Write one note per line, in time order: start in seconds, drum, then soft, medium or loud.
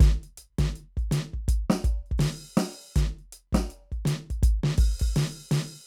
0.01 open hi-hat loud
0.01 kick loud
0.01 snare loud
0.01 hi-hat pedal soft
0.24 closed hi-hat soft
0.38 closed hi-hat loud
0.38 kick soft
0.59 kick medium
0.59 snare loud
0.59 closed hi-hat medium
0.76 closed hi-hat medium
0.98 kick medium
0.98 closed hi-hat soft
1.12 closed hi-hat loud
1.12 snare loud
1.34 kick soft
1.49 closed hi-hat loud
1.49 kick medium
1.70 snare loud
1.85 closed hi-hat medium
1.85 kick medium
2.07 closed hi-hat soft
2.12 kick medium
2.19 open hi-hat loud
2.19 snare loud
2.19 hi-hat pedal medium
2.58 open hi-hat loud
2.58 snare loud
2.96 open hi-hat loud
2.96 kick medium
2.96 snare loud
2.96 hi-hat pedal medium
3.19 closed hi-hat soft
3.33 closed hi-hat loud
3.53 kick medium
3.53 snare loud
3.53 closed hi-hat medium
3.71 closed hi-hat medium
3.92 kick soft
3.92 closed hi-hat soft
4.06 closed hi-hat loud
4.06 snare loud
4.31 kick soft
4.31 closed hi-hat medium
4.43 closed hi-hat loud
4.43 kick medium
4.64 snare loud
4.78 open hi-hat loud
4.78 kick medium
5.00 kick medium
5.00 open hi-hat loud
5.11 kick soft
5.16 open hi-hat loud
5.16 snare loud
5.52 open hi-hat loud
5.52 snare loud